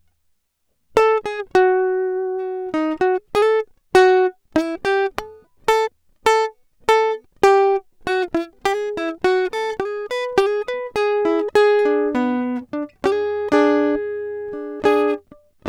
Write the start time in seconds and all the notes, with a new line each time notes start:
0.98 A4
1.27 G#4
1.56 F#4
2.75 D#4
3.02 F#4
3.36 G#4
3.48 A4
3.96 F#4
4.57 E4
4.86 G4
5.69 A4
6.27 A4
6.90 A4
7.45 G4
8.08 F#4
8.36 F4
8.66 G4
8.84 G#4
8.98 E4
9.26 F#4
9.54 A4
9.81 G#4
10.12 B4
10.39 G#4
10.70 B4
10.97 G#4
11.26 E4
11.56 G#4
11.87 D4
12.16 B3
12.74 D4
13.05 D4 G4
13.18 G#4
13.53 D4 G#4
14.55 D4
14.85 D4 G#4